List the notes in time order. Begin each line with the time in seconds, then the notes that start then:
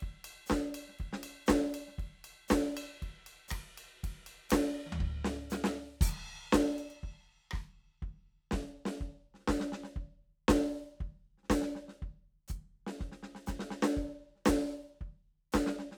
0.01 kick, ride
0.25 ride bell
0.47 snare, hi-hat pedal
0.52 kick
0.75 ride bell
0.89 snare
0.99 kick, ride
1.13 snare
1.24 ride bell
1.47 kick, snare, hi-hat pedal
1.74 ride bell
1.88 snare
1.95 kick, hi-hat pedal
2.00 ride
2.25 ride bell
2.49 kick, snare, hi-hat pedal, ride
2.77 ride bell
3.02 kick, ride
3.27 ride bell
3.49 kick, cross-stick, hi-hat pedal, ride
3.78 ride bell
4.04 kick, ride
4.27 ride bell
4.50 kick, snare, hi-hat pedal, ride
4.87 high tom
4.93 floor tom
5.01 kick
5.25 snare
5.51 snare, hi-hat pedal
5.64 snare
6.01 open hi-hat, kick, crash
6.52 kick, snare, hi-hat pedal
6.79 closed hi-hat
6.91 closed hi-hat
7.04 kick
7.51 kick, cross-stick
7.56 cross-stick
8.03 kick
8.52 kick, snare
8.86 snare
9.01 kick
9.34 snare
9.40 snare
9.48 kick, snare
9.61 snare
9.73 snare
9.84 snare
9.96 kick
10.49 kick, snare
11.01 kick
11.38 snare
11.44 snare
11.50 kick, snare, hi-hat pedal
11.62 snare
11.76 snare
11.89 snare
12.02 kick
12.48 kick, hi-hat pedal
12.87 snare
13.00 kick, snare
13.12 snare
13.23 snare
13.35 snare
13.47 kick, snare, hi-hat pedal
13.60 snare
13.71 snare
13.83 snare
13.97 kick
14.29 snare
14.36 snare
14.40 snare
14.46 kick, snare, hi-hat pedal
15.01 kick
15.53 kick, snare, hi-hat pedal
15.67 snare
15.79 snare
15.92 snare